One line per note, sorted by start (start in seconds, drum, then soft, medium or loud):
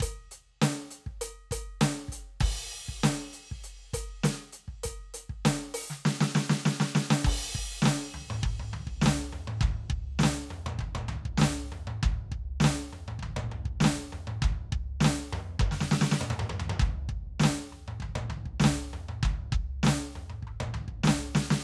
0.01 closed hi-hat loud
0.01 kick loud
0.32 closed hi-hat medium
0.62 closed hi-hat loud
0.62 snare loud
0.91 closed hi-hat medium
1.07 kick medium
1.22 closed hi-hat loud
1.51 closed hi-hat loud
1.51 kick medium
1.81 closed hi-hat loud
1.81 snare loud
2.09 closed hi-hat medium
2.09 kick medium
2.37 snare soft
2.41 kick loud
2.41 crash loud
2.56 hi-hat pedal soft
2.70 closed hi-hat soft
2.89 kick medium
2.89 snare soft
3.04 closed hi-hat loud
3.04 snare loud
3.33 closed hi-hat medium
3.52 kick medium
3.64 closed hi-hat medium
3.94 closed hi-hat loud
3.94 kick medium
4.24 closed hi-hat loud
4.24 snare loud
4.53 closed hi-hat medium
4.68 kick medium
4.84 closed hi-hat loud
4.84 kick medium
5.14 closed hi-hat loud
5.30 kick medium
5.45 closed hi-hat loud
5.45 snare loud
5.74 open hi-hat loud
5.90 snare medium
6.05 snare loud
6.21 snare loud
6.35 snare loud
6.50 snare loud
6.66 snare loud
6.80 snare loud
6.95 snare loud
7.11 snare loud
7.25 kick loud
7.25 crash loud
7.55 kick medium
7.82 snare loud
7.86 snare loud
7.86 hi-hat pedal soft
8.14 floor tom medium
8.30 high tom loud
8.43 kick loud
8.43 floor tom medium
8.60 high tom medium
8.73 floor tom loud
8.87 kick medium
9.02 snare loud
9.06 snare loud
9.33 mid tom medium
9.48 high tom loud
9.61 kick loud
9.61 floor tom loud
9.90 kick loud
10.19 snare loud
10.24 snare loud
10.51 mid tom medium
10.67 high tom loud
10.79 kick medium
10.79 floor tom medium
10.95 high tom loud
11.09 floor tom loud
11.26 kick medium
11.38 snare loud
11.42 snare loud
11.72 mid tom medium
11.87 high tom medium
12.03 kick loud
12.03 floor tom loud
12.32 kick medium
12.61 snare loud
12.64 snare loud
12.93 mid tom medium
13.08 high tom medium
13.19 kick medium
13.19 floor tom loud
13.37 high tom loud
13.52 mid tom medium
13.66 kick medium
13.81 snare loud
13.85 snare loud
14.13 mid tom medium
14.27 high tom loud
14.42 kick loud
14.42 floor tom loud
14.72 kick loud
15.01 snare loud
15.05 snare loud
15.33 mid tom loud
15.60 kick loud
15.60 mid tom loud
15.71 snare medium
15.81 snare loud
15.92 snare loud
16.01 snare loud
16.06 hi-hat pedal soft
16.12 snare loud
16.21 high tom loud
16.30 high tom loud
16.39 mid tom loud
16.50 mid tom loud
16.60 floor tom loud
16.70 mid tom loud
16.80 kick loud
16.80 floor tom loud
17.09 kick medium
17.40 snare loud
17.44 snare loud
17.73 mid tom medium
17.88 high tom medium
18.00 kick medium
18.00 floor tom loud
18.16 high tom loud
18.30 floor tom loud
18.46 kick medium
18.60 snare loud
18.64 snare loud
18.93 mid tom medium
19.09 high tom medium
19.23 kick loud
19.23 floor tom loud
19.53 kick loud
19.83 snare loud
19.87 snare loud
20.16 mid tom medium
20.30 high tom medium
20.43 kick medium
20.47 floor tom medium
20.61 high tom loud
20.74 floor tom loud
20.88 kick medium
21.04 snare loud
21.08 snare loud
21.35 snare loud
21.51 snare loud